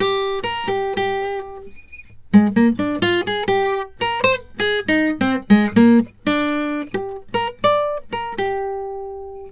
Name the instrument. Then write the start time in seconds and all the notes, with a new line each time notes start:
acoustic guitar
0.01 G4
0.45 A#4
0.69 G4
0.98 G4
2.35 G#3
2.57 A#3
2.80 D4
3.03 F4
3.28 G#4
3.49 G4
4.02 A#4
4.25 C5
4.61 G#4
4.89 D#4
5.22 C4
5.51 G#3
5.77 A#3
6.28 D4
6.95 G4
7.35 A#4
7.65 D5
8.14 A#4
8.39 G4